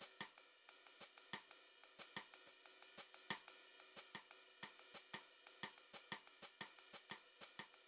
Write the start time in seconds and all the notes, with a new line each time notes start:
0.01 hi-hat pedal
0.05 ride
0.21 cross-stick
0.38 ride
0.69 ride
0.87 ride
1.01 hi-hat pedal
1.18 ride
1.33 cross-stick
1.48 hi-hat pedal, ride
1.84 ride
1.99 hi-hat pedal, ride
2.16 cross-stick
2.34 ride
2.46 hi-hat pedal
2.66 ride
2.82 ride
2.98 hi-hat pedal
3.14 ride
3.30 cross-stick
3.48 ride
3.80 ride
3.96 hi-hat pedal, ride
4.15 cross-stick
4.31 ride
4.63 cross-stick, ride
4.79 ride
4.94 hi-hat pedal
5.14 cross-stick, ride
5.47 ride
5.63 cross-stick
5.78 ride
5.93 hi-hat pedal, ride
6.12 cross-stick
6.27 ride
6.42 hi-hat pedal
6.61 cross-stick, ride
6.65 hi-hat pedal
6.79 ride
6.93 hi-hat pedal
7.10 cross-stick, ride
7.41 hi-hat pedal, ride
7.59 cross-stick
7.74 ride